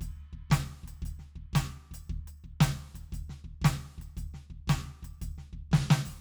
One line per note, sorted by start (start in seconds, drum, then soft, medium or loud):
0.01 kick medium
0.01 percussion medium
0.23 snare soft
0.33 kick soft
0.50 kick medium
0.50 snare loud
0.50 percussion loud
0.84 kick soft
0.88 percussion medium
1.02 kick medium
1.02 percussion medium
1.19 snare soft
1.36 kick soft
1.53 kick medium
1.53 snare loud
1.53 percussion loud
1.91 kick soft
1.91 percussion medium
2.10 kick medium
2.27 percussion medium
2.44 kick soft
2.61 kick medium
2.61 snare loud
2.61 percussion loud
2.95 kick soft
2.95 percussion medium
3.12 kick medium
3.12 percussion medium
3.30 snare soft
3.44 kick soft
3.62 kick medium
3.62 snare loud
3.62 percussion loud
3.98 kick soft
3.98 percussion soft
4.17 kick medium
4.17 percussion medium
4.34 snare soft
4.50 kick soft
4.68 kick medium
4.68 snare loud
4.68 percussion medium
4.86 snare soft
4.90 snare soft
5.03 kick soft
5.03 percussion medium
5.22 kick medium
5.22 percussion medium
5.38 snare soft
5.53 kick soft
5.72 kick medium
5.72 snare loud
5.90 snare loud
5.98 snare soft
6.04 kick soft
6.04 snare soft
6.04 percussion medium